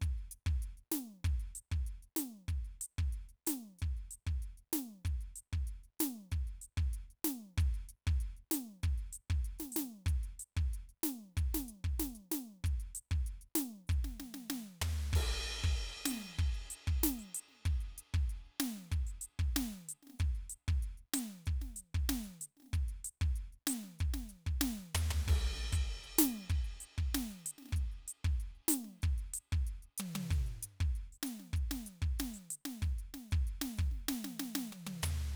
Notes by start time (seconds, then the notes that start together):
0.02 kick, closed hi-hat
0.18 closed hi-hat
0.31 closed hi-hat
0.46 kick
0.62 closed hi-hat
0.77 closed hi-hat
0.92 snare, closed hi-hat
1.24 kick, closed hi-hat
1.40 closed hi-hat
1.55 closed hi-hat
1.72 kick
1.86 closed hi-hat
2.02 closed hi-hat
2.16 closed hi-hat, snare
2.48 kick, closed hi-hat
2.65 closed hi-hat
2.81 closed hi-hat
2.98 kick
3.12 closed hi-hat
3.29 closed hi-hat
3.47 closed hi-hat, snare
3.79 kick, closed hi-hat
3.97 closed hi-hat
4.11 closed hi-hat
4.27 kick
4.42 closed hi-hat
4.57 closed hi-hat
4.73 snare, closed hi-hat
5.05 kick, closed hi-hat
5.21 closed hi-hat
5.36 closed hi-hat
5.53 kick
5.67 closed hi-hat
5.84 closed hi-hat
5.99 snare, closed hi-hat
6.32 kick, closed hi-hat
6.47 closed hi-hat
6.61 closed hi-hat
6.77 kick
6.93 closed hi-hat
7.10 closed hi-hat
7.24 snare, closed hi-hat
7.58 kick, closed hi-hat
7.74 closed hi-hat
7.89 closed hi-hat
8.07 kick
8.20 closed hi-hat
8.37 closed hi-hat
8.51 closed hi-hat, snare
8.83 kick, closed hi-hat
8.98 closed hi-hat
9.13 closed hi-hat
9.30 kick
9.44 closed hi-hat
9.59 snare, closed hi-hat
9.72 closed hi-hat
9.76 snare
10.06 kick, closed hi-hat
10.23 closed hi-hat
10.39 closed hi-hat
10.57 kick
10.73 closed hi-hat
10.89 closed hi-hat
11.03 snare, closed hi-hat
11.37 kick, closed hi-hat
11.54 snare, closed hi-hat
11.68 closed hi-hat
11.84 kick
12.00 snare, closed hi-hat
12.15 closed hi-hat
12.32 snare, closed hi-hat
12.64 kick, closed hi-hat
12.80 closed hi-hat
12.95 closed hi-hat
13.11 kick
13.26 closed hi-hat
13.41 closed hi-hat
13.55 open hi-hat, snare
13.87 kick, hi-hat pedal
13.91 closed hi-hat
14.04 snare
14.20 snare
14.34 snare
14.50 snare
14.82 floor tom
15.13 kick, ride
15.64 kick
15.77 closed hi-hat
15.89 closed hi-hat
16.06 open hi-hat, snare
16.11 snare
16.36 kick, closed hi-hat, hi-hat pedal
16.54 closed hi-hat
16.70 closed hi-hat
16.87 kick
17.03 snare, closed hi-hat
17.19 closed hi-hat
17.35 closed hi-hat
17.48 snare
17.65 kick, closed hi-hat
17.81 closed hi-hat
17.98 closed hi-hat
18.14 kick
18.29 closed hi-hat
18.45 closed hi-hat
18.60 snare, closed hi-hat
18.77 snare
18.82 snare
18.92 kick, closed hi-hat
19.07 closed hi-hat
19.21 closed hi-hat
19.39 kick
19.56 snare, closed hi-hat
19.72 closed hi-hat
19.89 closed hi-hat
20.03 snare
20.07 snare
20.10 snare
20.19 kick, closed hi-hat
20.35 closed hi-hat
20.50 closed hi-hat
20.68 kick
20.82 closed hi-hat
20.97 closed hi-hat
21.14 closed hi-hat, snare
21.33 snare
21.46 kick, closed hi-hat
21.61 snare, closed hi-hat
21.76 closed hi-hat
21.94 kick
22.09 snare, closed hi-hat
22.24 closed hi-hat
22.41 closed hi-hat
22.57 snare
22.60 snare
22.62 snare
22.66 snare
22.73 kick, closed hi-hat
22.88 closed hi-hat
23.04 closed hi-hat
23.21 kick
23.36 closed hi-hat
23.52 closed hi-hat
23.67 closed hi-hat, snare
23.84 snare
23.99 kick, closed hi-hat
24.14 snare, closed hi-hat
24.29 closed hi-hat
24.46 kick
24.61 snare, closed hi-hat
24.95 floor tom, hi-hat pedal
25.11 floor tom
25.28 kick, ride
25.55 snare
25.72 closed hi-hat, kick
26.04 closed hi-hat
26.18 open hi-hat, snare
26.34 snare
26.49 kick, closed hi-hat
26.64 closed hi-hat
26.80 closed hi-hat
26.98 kick
27.15 snare, closed hi-hat
27.30 closed hi-hat
27.46 closed hi-hat
27.58 snare
27.62 snare
27.66 snare
27.69 kick, snare
27.76 closed hi-hat
27.92 closed hi-hat
28.08 closed hi-hat
28.24 kick
28.40 closed hi-hat
28.55 closed hi-hat
28.68 closed hi-hat, snare
28.84 snare
29.02 kick, closed hi-hat
29.18 closed hi-hat
29.34 closed hi-hat
29.52 kick
29.67 closed hi-hat
29.82 closed hi-hat
29.98 closed hi-hat, high tom
30.15 high tom
30.31 kick, closed hi-hat
30.46 closed hi-hat
30.63 closed hi-hat
30.80 kick
30.95 closed hi-hat
31.12 closed hi-hat
31.23 snare, closed hi-hat
31.40 snare
31.53 kick, closed hi-hat
31.71 snare, closed hi-hat
31.86 closed hi-hat
32.02 kick
32.19 snare, closed hi-hat
32.34 closed hi-hat
32.50 closed hi-hat
32.65 snare
32.82 kick, closed hi-hat
32.98 closed hi-hat
33.14 snare
33.31 kick, closed hi-hat
33.47 closed hi-hat
33.61 snare
33.77 kick, closed hi-hat
33.91 snare
34.08 snare
34.24 snare
34.40 snare
34.55 snare
34.72 high tom
34.87 high tom
35.03 floor tom, hi-hat pedal